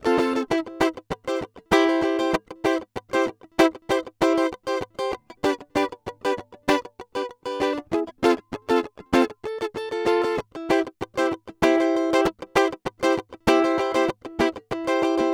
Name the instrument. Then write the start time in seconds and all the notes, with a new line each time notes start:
acoustic guitar
0.07 C4 F4 A4
0.19 C4 F4 A4
0.38 A4
0.52 E4 G4
0.82 E4 C5
1.29 E4 G4 C5
1.73 E4 G4 C5
1.91 C5
2.03 E4 G4 C5
2.20 E4 C5
2.66 E4 G4 C5
3.15 E4 G4 C5
3.60 E4 G4 C5
3.91 E4 G4 C5
4.23 E4 G4 C5
4.39 G4 C5
4.68 G4 C5
5.00 G4 C5
5.45 D4 G4 B4
5.77 D4 G4 B4
6.26 D4 G4 B4
6.70 D4 G4 B4
7.16 D4 G4 B4
7.47 D4 G4 B4
7.62 D4 G4 B4
7.95 E4 G#4
8.24 C4 F4 A4
8.71 C4 F4 A4
9.15 C4 F4 A4
9.47 A4
9.63 A4
9.77 A4
9.94 F4 A4
10.07 F4 A4
10.23 F4 A4
10.57 E4
10.71 E4 G4 C5
11.19 E4 G4 C5
11.64 E4 G4 C5
11.80 G4 C5
11.97 C5
12.15 E4 G4 C5
12.57 E4 G4 C5
13.04 E4 G4 C5
13.48 E4 G4 C5
13.64 E4 G4 C5
13.79 E4 G4 C5
13.96 E4 G4 C5
14.27 E4
14.41 E4 G4 C5
14.72 E4
14.89 E4 G4 C5
15.04 E4 G4 C5
15.20 E4 G4